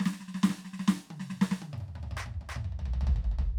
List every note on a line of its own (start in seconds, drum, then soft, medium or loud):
0.01 snare loud
0.06 snare loud
0.14 snare medium
0.21 snare medium
0.29 snare medium
0.35 snare medium
0.44 snare loud
0.50 snare loud
0.59 snare medium
0.65 snare medium
0.74 snare medium
0.80 snare medium
0.88 snare loud
1.11 high tom loud
1.20 snare medium
1.31 snare medium
1.42 snare loud
1.52 snare loud
1.62 high tom loud
1.74 mid tom loud
1.79 mid tom medium
1.79 ride soft
1.89 mid tom medium
1.96 mid tom medium
2.04 mid tom medium
2.12 mid tom medium
2.18 percussion loud
2.27 mid tom medium
2.35 mid tom soft
2.42 mid tom medium
2.50 percussion loud
2.57 mid tom loud
2.65 floor tom medium
2.73 floor tom medium
2.80 floor tom medium
2.86 floor tom loud
2.94 floor tom loud
3.02 floor tom loud
3.08 floor tom loud
3.17 floor tom loud
3.25 floor tom medium
3.32 floor tom medium
3.39 floor tom loud